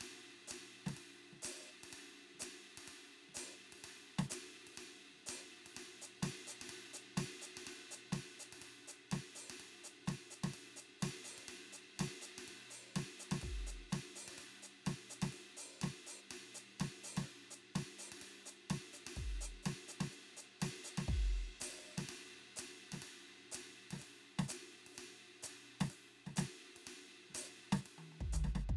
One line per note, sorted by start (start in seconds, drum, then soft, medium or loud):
0.01 ride loud
0.48 hi-hat pedal loud
0.48 ride loud
0.86 snare soft
0.86 ride medium
0.97 ride medium
1.32 snare soft
1.42 hi-hat pedal loud
1.42 ride loud
1.84 ride medium
1.90 hi-hat pedal soft
1.90 ride medium
2.34 snare soft
2.40 hi-hat pedal loud
2.40 ride loud
2.78 ride medium
2.86 hi-hat pedal soft
2.86 ride medium
3.29 snare soft
3.35 hi-hat pedal loud
3.35 ride loud
3.73 ride medium
3.78 hi-hat pedal soft
3.84 ride medium
4.19 snare medium
4.30 hi-hat pedal loud
4.30 ride loud
4.67 ride medium
4.73 hi-hat pedal soft
4.78 ride medium
5.13 snare soft
5.26 hi-hat pedal loud
5.26 ride loud
5.66 ride medium
5.77 ride loud
6.02 hi-hat pedal medium
6.23 snare soft
6.23 ride loud
6.47 hi-hat pedal medium
6.61 ride medium
6.69 ride medium
6.94 hi-hat pedal loud
7.16 snare medium
7.16 hi-hat pedal soft
7.16 ride loud
7.42 hi-hat pedal medium
7.57 ride medium
7.64 hi-hat pedal soft
7.64 ride medium
7.91 hi-hat pedal loud
8.12 snare soft
8.12 ride loud
8.39 hi-hat pedal medium
8.53 ride medium
8.62 hi-hat pedal soft
8.62 ride medium
8.88 hi-hat pedal medium
9.10 snare soft
9.10 hi-hat pedal soft
9.10 ride loud
9.35 hi-hat pedal medium
9.50 ride loud
9.60 ride medium
9.84 hi-hat pedal medium
10.06 snare soft
10.06 hi-hat pedal soft
10.06 ride medium
10.31 hi-hat pedal medium
10.44 snare soft
10.44 ride medium
10.52 hi-hat pedal soft
10.52 ride medium
10.76 hi-hat pedal medium
10.99 snare medium
10.99 hi-hat pedal soft
10.99 ride loud
11.24 hi-hat pedal medium
11.38 ride medium
11.47 hi-hat pedal soft
11.47 ride medium
11.73 hi-hat pedal medium
11.96 hi-hat pedal soft
11.96 ride loud
12.00 snare soft
12.22 hi-hat pedal medium
12.38 ride medium
12.45 hi-hat pedal soft
12.45 ride medium
12.70 hi-hat pedal medium
12.94 snare soft
12.94 hi-hat pedal soft
12.94 ride loud
13.20 hi-hat pedal medium
13.31 snare medium
13.31 ride loud
13.42 kick soft
13.42 hi-hat pedal soft
13.42 ride medium
13.67 hi-hat pedal medium
13.90 snare soft
13.90 hi-hat pedal soft
13.90 ride loud
14.16 hi-hat pedal medium
14.28 ride medium
14.38 hi-hat pedal soft
14.38 ride medium
14.63 hi-hat pedal medium
14.85 snare medium
14.85 hi-hat pedal soft
14.85 ride loud
15.10 hi-hat pedal medium
15.22 snare medium
15.22 ride loud
15.33 hi-hat pedal soft
15.33 ride medium
15.57 hi-hat pedal medium
15.82 snare soft
15.82 ride loud
16.07 hi-hat pedal medium
16.30 hi-hat pedal soft
16.30 ride loud
16.55 hi-hat pedal medium
16.78 snare soft
16.78 hi-hat pedal soft
16.78 ride loud
17.04 hi-hat pedal medium
17.17 snare medium
17.17 ride medium
17.27 hi-hat pedal soft
17.51 hi-hat pedal medium
17.74 snare soft
17.74 hi-hat pedal soft
17.74 ride loud
17.99 hi-hat pedal medium
18.12 ride medium
18.21 hi-hat pedal soft
18.21 ride medium
18.46 hi-hat pedal medium
18.69 snare medium
18.69 hi-hat pedal soft
18.69 ride loud
18.93 hi-hat pedal medium
19.07 ride loud
19.16 kick soft
19.16 hi-hat pedal soft
19.16 ride medium
19.41 hi-hat pedal loud
19.63 snare soft
19.63 hi-hat pedal soft
19.63 ride loud
19.88 hi-hat pedal medium
20.00 snare soft
20.00 ride loud
20.11 hi-hat pedal soft
20.11 ride soft
20.37 hi-hat pedal medium
20.60 snare soft
20.60 hi-hat pedal soft
20.60 ride loud
20.84 hi-hat pedal medium
20.98 snare soft
20.98 ride loud
21.08 kick soft
21.08 ride medium
21.60 hi-hat pedal loud
21.60 ride loud
21.98 snare soft
21.98 ride loud
22.09 ride loud
22.56 hi-hat pedal loud
22.56 ride loud
22.92 snare soft
22.92 ride medium
23.02 hi-hat pedal soft
23.02 ride medium
23.52 hi-hat pedal loud
23.52 ride loud
23.91 snare soft
23.91 ride medium
23.99 hi-hat pedal soft
23.99 ride medium
24.39 snare medium
24.48 hi-hat pedal loud
24.48 ride loud
24.70 hi-hat pedal soft
24.87 ride medium
24.94 hi-hat pedal soft
24.94 ride medium
25.43 hi-hat pedal loud
25.43 ride medium
25.64 hi-hat pedal soft
25.81 snare medium
25.81 ride medium
25.90 hi-hat pedal soft
25.90 ride medium
26.27 snare soft
26.36 snare medium
26.36 hi-hat pedal loud
26.36 ride loud
26.76 ride medium
26.85 hi-hat pedal soft
26.85 ride medium
27.30 snare soft
27.34 hi-hat pedal loud
27.34 ride loud
27.56 hi-hat pedal soft
27.72 snare medium
27.81 hi-hat pedal soft
27.86 ride medium
27.98 high tom soft
28.12 high tom soft
28.21 kick soft
28.33 floor tom medium
28.33 hi-hat pedal loud
28.44 snare soft
28.55 snare soft
28.69 kick soft